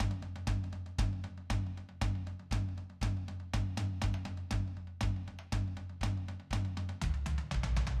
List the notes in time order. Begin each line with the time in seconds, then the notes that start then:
0.00 kick, high tom
0.11 high tom
0.22 high tom
0.36 high tom
0.47 kick, high tom
0.64 high tom
0.72 high tom
0.86 high tom
0.98 kick, high tom
1.13 high tom
1.24 high tom
1.37 high tom
1.50 kick, high tom
1.66 high tom
1.77 high tom
1.89 high tom
2.01 kick, high tom
2.15 high tom
2.27 high tom
2.39 high tom
2.51 kick, high tom
2.69 high tom
2.77 high tom
2.90 high tom
3.01 kick, high tom
3.17 high tom
3.28 high tom
3.40 high tom
3.54 kick, high tom
3.77 high tom
4.02 kick, high tom
4.14 high tom
4.25 high tom
4.37 high tom
4.51 kick, high tom
4.67 high tom
4.77 high tom
4.87 high tom
5.01 kick, high tom
5.16 high tom
5.28 high tom
5.39 high tom
5.52 kick, high tom
5.67 high tom
5.77 high tom
5.89 high tom
6.01 kick, high tom
6.17 high tom
6.28 high tom
6.40 high tom
6.51 kick, high tom
6.65 high tom
6.77 high tom
6.89 high tom
7.02 kick, mid tom
7.14 mid tom
7.26 mid tom
7.38 mid tom
7.51 kick, floor tom
7.63 floor tom
7.77 floor tom
7.87 floor tom